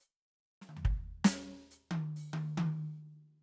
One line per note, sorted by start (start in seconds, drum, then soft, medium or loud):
0.02 hi-hat pedal soft
0.61 snare soft
0.69 high tom soft
0.77 floor tom medium
0.85 kick medium
1.24 open hi-hat loud
1.24 snare loud
1.33 open hi-hat soft
1.71 hi-hat pedal medium
1.91 high tom loud
2.16 hi-hat pedal soft
2.33 high tom loud
2.57 high tom loud